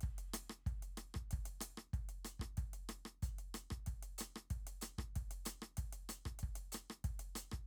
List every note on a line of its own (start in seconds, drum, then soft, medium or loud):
0.01 kick medium
0.01 closed hi-hat soft
0.18 closed hi-hat soft
0.34 cross-stick medium
0.34 closed hi-hat medium
0.50 cross-stick soft
0.67 kick medium
0.67 closed hi-hat soft
0.83 closed hi-hat soft
0.98 cross-stick soft
0.98 closed hi-hat soft
1.14 kick medium
1.14 cross-stick soft
1.31 kick medium
1.31 closed hi-hat soft
1.46 closed hi-hat soft
1.61 cross-stick soft
1.61 closed hi-hat medium
1.78 cross-stick soft
1.94 kick medium
1.94 closed hi-hat soft
2.09 closed hi-hat soft
2.25 closed hi-hat soft
2.25 cross-stick soft
2.40 kick soft
2.40 cross-stick soft
2.57 kick medium
2.57 closed hi-hat soft
2.74 closed hi-hat soft
2.89 cross-stick medium
2.89 closed hi-hat soft
3.06 cross-stick soft
3.23 closed hi-hat soft
3.23 kick medium
3.39 closed hi-hat soft
3.55 closed hi-hat soft
3.55 cross-stick medium
3.71 kick soft
3.71 cross-stick soft
3.87 kick medium
3.87 closed hi-hat soft
4.03 closed hi-hat soft
4.18 closed hi-hat medium
4.18 cross-stick medium
4.36 cross-stick soft
4.51 kick medium
4.51 closed hi-hat soft
4.67 closed hi-hat soft
4.82 closed hi-hat medium
4.82 cross-stick soft
4.99 kick medium
4.99 cross-stick soft
5.16 kick medium
5.16 closed hi-hat soft
5.31 closed hi-hat soft
5.46 closed hi-hat medium
5.46 cross-stick medium
5.62 cross-stick soft
5.77 kick medium
5.77 closed hi-hat soft
5.93 closed hi-hat soft
6.09 closed hi-hat medium
6.09 cross-stick soft
6.26 kick soft
6.26 cross-stick soft
6.39 closed hi-hat soft
6.43 kick medium
6.56 closed hi-hat soft
6.72 closed hi-hat medium
6.72 cross-stick soft
6.90 cross-stick soft
7.05 kick medium
7.05 closed hi-hat soft
7.20 closed hi-hat soft
7.36 closed hi-hat medium
7.36 cross-stick soft
7.52 kick soft
7.52 cross-stick soft